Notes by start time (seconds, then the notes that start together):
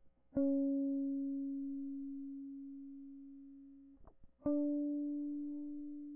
0.37 C#4
4.46 D4